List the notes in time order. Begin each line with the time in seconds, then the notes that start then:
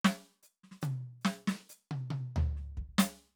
0.04 snare
0.43 hi-hat pedal
0.63 snare
0.71 snare
0.81 hi-hat pedal, high tom
1.21 snare, hi-hat pedal
1.47 snare
1.69 hi-hat pedal
1.91 high tom
2.10 high tom
2.36 floor tom
2.57 snare
2.77 kick
2.98 open hi-hat, snare